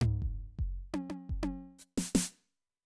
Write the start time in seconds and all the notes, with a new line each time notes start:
0.01 floor tom
0.22 kick
0.59 kick
0.94 high tom
1.10 high tom
1.29 kick
1.43 high tom
1.79 hi-hat pedal
1.98 snare
2.15 snare